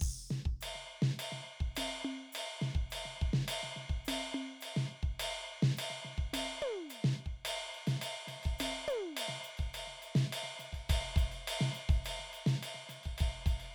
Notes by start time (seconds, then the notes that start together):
0.01 kick, hi-hat pedal, crash
0.31 snare
0.46 kick
0.61 hi-hat pedal, ride
0.76 snare
1.02 snare
1.19 hi-hat pedal, ride
1.32 snare
1.61 kick
1.76 hi-hat pedal, high tom, ride
2.05 high tom
2.33 hi-hat pedal, ride
2.62 snare
2.75 kick
2.91 hi-hat pedal, ride
3.06 snare
3.22 kick
3.34 snare
3.48 hi-hat pedal, ride
3.63 snare
3.77 snare
3.90 kick
4.05 hi-hat pedal, high tom, ride
4.35 high tom
4.61 hi-hat pedal, ride
4.77 snare
5.03 kick
5.20 hi-hat pedal, ride
5.63 snare
5.77 hi-hat pedal, ride
5.90 snare
6.05 snare
6.18 kick
6.34 hi-hat pedal, high tom, ride
6.62 high tom
6.90 hi-hat pedal, ride
7.05 snare
7.26 kick
7.45 hi-hat pedal, ride
7.75 ride
7.87 snare, ride
8.02 hi-hat pedal, ride
8.28 snare, ride
8.43 kick, ride
8.59 hi-hat pedal, high tom, ride
8.88 hi-hat pedal, high tom
9.17 hi-hat pedal, ride
9.29 snare
9.44 hi-hat pedal, ride
9.58 kick, ride
9.74 hi-hat pedal, ride
9.88 snare
10.02 hi-hat pedal, ride
10.16 snare, ride
10.33 hi-hat pedal, ride
10.43 snare
10.60 snare, hi-hat pedal, ride
10.73 kick, ride
10.89 kick, hi-hat pedal, ride
11.02 snare
11.16 kick, hi-hat pedal, ride
11.32 ride
11.48 hi-hat pedal, ride
11.61 snare
11.75 hi-hat pedal, ride
11.89 kick, ride
12.05 hi-hat pedal, ride
12.20 snare
12.33 hi-hat pedal, ride
12.47 snare, ride
12.63 hi-hat pedal, ride
12.75 snare
12.89 snare, hi-hat pedal, ride
13.04 kick, ride
13.18 kick, hi-hat pedal, ride
13.46 kick, hi-hat pedal, ride
13.60 ride